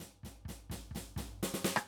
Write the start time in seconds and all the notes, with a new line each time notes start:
0.00 kick, snare, floor tom
0.23 kick, snare, floor tom
0.45 kick, snare, floor tom
0.70 kick, snare, floor tom
0.91 kick, floor tom
0.96 snare
1.16 kick, snare, floor tom
1.43 snare
1.54 snare
1.64 snare
1.76 cross-stick